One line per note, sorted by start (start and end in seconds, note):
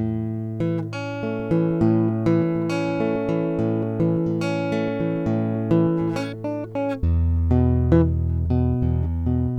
0.00 1.74 A2
0.62 0.86 E3
0.94 2.67 C#4
1.42 2.14 E3
1.83 2.43 A2
2.28 3.20 E3
2.44 2.52 C#3
2.71 4.35 C#4
3.30 3.86 E3
3.60 4.22 A2
4.02 4.93 E3
4.28 5.23 A2
4.43 6.10 C#4
5.02 5.56 E3
5.28 5.93 A2
5.56 6.35 E3
6.03 7.03 A2
6.18 6.37 C#4
6.46 6.70 D4
6.77 7.08 C#4
7.05 8.79 E2
7.38 8.48 B2
7.93 8.84 E3
8.52 9.05 B2
8.84 9.53 E2
9.06 9.13 B2